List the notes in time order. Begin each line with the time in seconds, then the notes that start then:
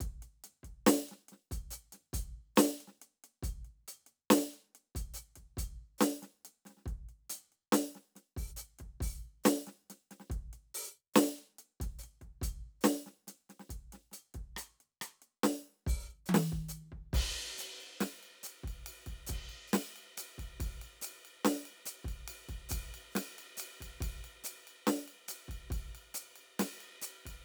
0.01 kick, closed hi-hat
0.23 closed hi-hat
0.44 snare, closed hi-hat
0.64 kick, closed hi-hat
0.87 closed hi-hat, snare
1.09 snare, closed hi-hat
1.29 snare, closed hi-hat
1.52 open hi-hat, kick
1.71 closed hi-hat, hi-hat pedal
1.93 snare, closed hi-hat
2.14 open hi-hat, kick
2.57 closed hi-hat, snare, hi-hat pedal
2.81 closed hi-hat
2.88 snare
3.02 closed hi-hat
3.25 closed hi-hat
3.43 closed hi-hat, kick
3.65 closed hi-hat
3.88 closed hi-hat
4.07 closed hi-hat
4.31 closed hi-hat, snare
4.38 snare
4.54 closed hi-hat
4.76 closed hi-hat
4.96 open hi-hat, kick
5.14 closed hi-hat, hi-hat pedal
5.36 kick, closed hi-hat
5.58 open hi-hat, kick
5.99 closed hi-hat, snare, hi-hat pedal
6.23 snare, closed hi-hat
6.46 snare, closed hi-hat
6.66 snare, closed hi-hat
6.70 snare
6.78 snare
6.80 snare
6.86 kick, snare, closed hi-hat
7.09 closed hi-hat
7.30 closed hi-hat
7.53 closed hi-hat
7.73 closed hi-hat, snare
7.95 snare, closed hi-hat
8.16 snare, closed hi-hat
8.37 open hi-hat, kick
8.57 closed hi-hat, hi-hat pedal
8.79 kick, closed hi-hat
9.01 open hi-hat, kick, ride
9.44 closed hi-hat, snare, hi-hat pedal
9.67 snare, closed hi-hat
9.90 snare, closed hi-hat
10.12 snare, closed hi-hat
10.21 snare
10.30 kick, closed hi-hat
10.54 closed hi-hat
10.75 open hi-hat
11.14 closed hi-hat, snare, hi-hat pedal
11.39 closed hi-hat
11.59 closed hi-hat
11.81 kick, snare, open hi-hat
11.99 hi-hat pedal
12.04 closed hi-hat
12.22 kick, closed hi-hat
12.42 open hi-hat, kick
12.82 closed hi-hat, snare, hi-hat pedal
13.07 snare, closed hi-hat
13.28 snare, closed hi-hat
13.50 snare, closed hi-hat
13.60 snare
13.70 kick, closed hi-hat
13.93 snare, closed hi-hat
14.12 closed hi-hat, snare
14.35 kick, closed hi-hat
14.57 closed hi-hat, cross-stick
14.81 closed hi-hat
15.02 closed hi-hat, cross-stick
15.22 closed hi-hat
15.44 closed hi-hat, snare
15.68 closed hi-hat
15.87 open hi-hat, kick
16.27 hi-hat pedal, high tom
16.35 snare
16.53 kick
16.69 hi-hat pedal
16.92 kick
17.14 kick, crash, ride
17.59 hi-hat pedal, ride
17.81 ride
18.01 snare, ride
18.23 ride
18.44 hi-hat pedal, ride
18.64 kick
18.68 ride
18.87 ride
19.07 kick, ride
19.27 kick, hi-hat pedal, ride
19.50 ride
19.68 hi-hat pedal
19.74 snare, ride
19.97 ride
20.18 hi-hat pedal, ride
20.39 kick, ride
20.60 kick, hi-hat pedal, ride
20.82 ride
21.02 hi-hat pedal, ride
21.26 ride
21.45 snare, ride
21.66 ride
21.86 hi-hat pedal, ride
22.05 kick, ride
22.28 ride
22.49 kick, ride
22.70 kick, hi-hat pedal, ride
22.95 ride
23.12 snare, hi-hat pedal
23.17 ride
23.39 ride
23.58 hi-hat pedal, ride
23.81 kick, ride
24.01 kick, ride
24.25 ride
24.45 hi-hat pedal, ride
24.68 ride
24.88 snare, ride
25.08 ride
25.29 hi-hat pedal, ride
25.49 kick, ride
25.71 kick, ride
25.95 ride
26.15 hi-hat pedal, ride
26.36 ride
26.60 snare, ride
26.81 ride
27.02 hi-hat pedal, ride
27.26 kick, ride